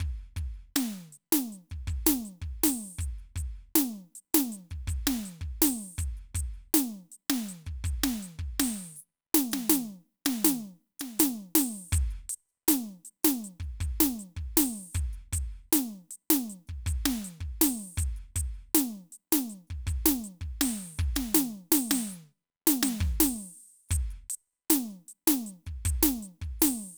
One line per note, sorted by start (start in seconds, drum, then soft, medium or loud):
0.00 kick medium
0.00 closed hi-hat medium
0.18 closed hi-hat soft
0.36 kick medium
0.36 closed hi-hat medium
0.54 closed hi-hat soft
0.76 closed hi-hat loud
0.76 snare loud
0.94 closed hi-hat soft
1.12 closed hi-hat medium
1.32 closed hi-hat soft
1.32 snare loud
1.52 closed hi-hat medium
1.70 kick soft
1.70 closed hi-hat soft
1.87 closed hi-hat soft
1.87 kick medium
2.06 closed hi-hat medium
2.06 snare loud
2.25 closed hi-hat medium
2.42 kick soft
2.42 closed hi-hat soft
2.63 open hi-hat loud
2.63 snare loud
2.98 closed hi-hat medium
2.98 kick medium
2.98 hi-hat pedal medium
3.18 closed hi-hat soft
3.36 closed hi-hat medium
3.36 kick medium
3.55 closed hi-hat soft
3.75 closed hi-hat loud
3.75 snare loud
4.15 closed hi-hat medium
4.34 closed hi-hat medium
4.34 snare loud
4.40 snare soft
4.52 closed hi-hat medium
4.70 kick soft
4.70 closed hi-hat soft
4.87 closed hi-hat medium
4.87 kick medium
5.07 snare loud
5.07 closed hi-hat soft
5.25 closed hi-hat medium
5.41 kick soft
5.41 closed hi-hat soft
5.62 open hi-hat loud
5.62 snare loud
5.97 closed hi-hat loud
5.97 kick medium
5.97 hi-hat pedal medium
6.17 closed hi-hat soft
6.35 closed hi-hat loud
6.35 kick medium
6.54 closed hi-hat soft
6.74 closed hi-hat loud
6.74 snare loud
7.12 closed hi-hat medium
7.30 snare loud
7.30 closed hi-hat soft
7.48 closed hi-hat medium
7.66 kick soft
7.66 closed hi-hat soft
7.84 closed hi-hat medium
7.84 kick medium
8.03 snare loud
8.22 closed hi-hat medium
8.39 kick soft
8.60 open hi-hat loud
8.60 snare loud
8.96 hi-hat pedal medium
9.34 snare loud
9.34 closed hi-hat loud
9.52 snare loud
9.52 closed hi-hat loud
9.69 closed hi-hat loud
9.69 snare loud
10.25 snare loud
10.25 closed hi-hat loud
10.44 closed hi-hat loud
10.44 snare loud
10.99 snare medium
10.99 closed hi-hat loud
11.19 closed hi-hat loud
11.19 snare loud
11.55 open hi-hat loud
11.55 snare loud
11.91 closed hi-hat loud
11.91 kick medium
11.91 hi-hat pedal medium
12.10 closed hi-hat soft
12.29 closed hi-hat loud
12.49 closed hi-hat soft
12.68 closed hi-hat loud
12.68 snare loud
12.86 closed hi-hat soft
13.05 closed hi-hat medium
13.23 snare loud
13.23 closed hi-hat soft
13.44 closed hi-hat medium
13.60 kick soft
13.60 closed hi-hat soft
13.80 closed hi-hat medium
13.80 kick medium
14.00 snare loud
14.00 closed hi-hat soft
14.18 closed hi-hat medium
14.18 snare soft
14.36 kick soft
14.36 closed hi-hat soft
14.57 open hi-hat loud
14.57 snare loud
14.93 closed hi-hat loud
14.93 kick medium
14.93 hi-hat pedal medium
15.13 closed hi-hat soft
15.33 closed hi-hat loud
15.33 kick medium
15.52 closed hi-hat soft
15.73 closed hi-hat loud
15.73 snare loud
16.11 closed hi-hat loud
16.30 snare loud
16.49 closed hi-hat medium
16.67 kick soft
16.67 closed hi-hat soft
16.86 closed hi-hat loud
16.86 kick medium
17.05 snare loud
17.24 closed hi-hat medium
17.40 kick soft
17.40 closed hi-hat soft
17.61 open hi-hat loud
17.61 snare loud
17.96 closed hi-hat loud
17.96 kick medium
17.96 hi-hat pedal medium
18.16 closed hi-hat soft
18.36 closed hi-hat loud
18.36 kick medium
18.54 closed hi-hat soft
18.75 closed hi-hat loud
18.75 snare loud
19.12 closed hi-hat medium
19.32 closed hi-hat soft
19.32 snare loud
19.49 closed hi-hat medium
19.67 kick soft
19.67 closed hi-hat soft
19.87 closed hi-hat medium
19.87 kick medium
20.06 snare loud
20.06 closed hi-hat soft
20.24 closed hi-hat medium
20.41 kick soft
20.41 closed hi-hat soft
20.61 open hi-hat loud
20.61 snare loud
20.97 kick medium
20.97 hi-hat pedal medium
21.16 snare loud
21.16 closed hi-hat loud
21.34 open hi-hat loud
21.34 snare loud
21.72 open hi-hat loud
21.72 snare loud
21.91 open hi-hat loud
21.91 snare loud
22.10 hi-hat pedal medium
22.67 closed hi-hat loud
22.67 snare loud
22.83 closed hi-hat loud
22.83 snare loud
23.00 kick medium
23.20 open hi-hat loud
23.20 snare loud
23.89 closed hi-hat loud
23.89 kick medium
23.89 hi-hat pedal medium
24.10 closed hi-hat soft
24.30 closed hi-hat loud
24.48 closed hi-hat soft
24.70 closed hi-hat loud
24.70 snare loud
24.90 closed hi-hat soft
25.08 closed hi-hat medium
25.27 snare loud
25.27 closed hi-hat soft
25.46 closed hi-hat medium
25.66 kick soft
25.66 closed hi-hat soft
25.85 closed hi-hat loud
25.85 kick medium
26.03 snare loud
26.22 closed hi-hat medium
26.41 kick soft
26.41 closed hi-hat soft
26.59 open hi-hat loud
26.59 snare loud
26.59 hi-hat pedal soft